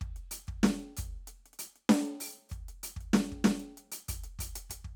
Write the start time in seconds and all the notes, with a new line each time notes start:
0.01 kick, closed hi-hat
0.16 closed hi-hat
0.31 closed hi-hat
0.47 kick, closed hi-hat
0.63 snare
0.79 closed hi-hat
0.97 closed hi-hat, kick
1.27 closed hi-hat
1.46 closed hi-hat
1.53 closed hi-hat
1.59 closed hi-hat
1.76 closed hi-hat
1.89 snare
2.05 closed hi-hat
2.20 open hi-hat
2.36 open hi-hat
2.49 kick, closed hi-hat, hi-hat pedal
2.68 closed hi-hat
2.83 closed hi-hat
2.96 kick
3.01 closed hi-hat
3.13 snare
3.29 kick, closed hi-hat
3.44 snare
3.59 closed hi-hat
3.77 closed hi-hat
3.92 closed hi-hat
4.08 closed hi-hat, kick
4.24 closed hi-hat
4.39 closed hi-hat, kick
4.56 closed hi-hat
4.70 kick, closed hi-hat
4.84 kick